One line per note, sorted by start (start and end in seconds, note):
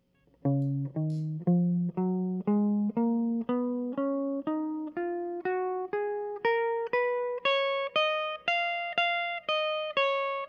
0.46 0.90 C#3
0.97 1.45 D#3
1.48 1.93 F3
1.98 2.45 F#3
2.48 2.93 G#3
2.97 3.45 A#3
3.49 3.97 B3
3.98 4.44 C#4
4.47 4.92 D#4
4.97 5.44 F4
5.45 5.89 F#4
5.93 6.40 G#4
6.45 6.89 A#4
6.93 7.41 B4
7.45 7.89 C#5
7.96 8.39 D#5
8.48 8.95 F5
8.98 9.42 F5
9.49 9.94 D#5
9.97 10.46 C#5